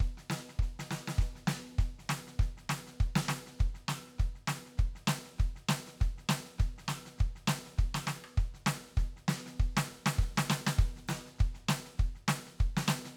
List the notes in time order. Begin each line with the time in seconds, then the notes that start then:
0.01 kick, snare
0.18 snare
0.31 snare
0.50 snare
0.60 kick, snare
0.80 snare
0.92 kick, snare
1.08 snare
1.19 kick, snare
1.36 snare
1.48 snare
1.67 snare
1.79 kick, snare
1.99 snare
2.10 snare
2.28 snare
2.40 kick, snare
2.58 snare
2.70 snare
2.88 snare
3.01 kick, snare
3.16 snare
3.29 snare
3.47 snare
3.60 kick, snare
3.75 snare
3.89 snare
4.08 snare
4.19 kick, snare
4.36 snare
4.48 snare
4.67 snare
4.78 kick, snare
4.96 snare
5.08 snare
5.26 snare
5.39 kick, snare
5.57 snare
5.70 snare
5.88 snare
6.01 kick, snare
6.19 snare
6.30 snare
6.46 snare
6.59 kick, snare
6.79 snare
6.89 snare
7.06 snare
7.19 kick, snare
7.36 snare
7.48 snare
7.67 snare
7.79 kick, snare
7.95 snare
8.08 snare
8.25 cross-stick
8.38 kick, snare
8.55 snare
8.67 snare
8.88 snare
8.98 kick, snare
9.17 snare
9.29 snare
9.47 snare
9.61 kick, snare
9.78 snare
9.92 snare
10.07 snare
10.19 kick, snare
10.38 snare
10.51 snare
10.67 snare
10.79 kick, snare
10.97 snare
11.02 kick
11.09 snare, hi-hat pedal
11.15 kick
11.27 snare
11.39 kick, snare
11.55 snare
11.69 snare, hi-hat pedal
11.86 snare
11.99 kick, snare
12.16 snare
12.29 snare, hi-hat pedal
12.47 snare
12.60 kick, snare
12.78 snare
12.88 snare, hi-hat pedal
13.06 snare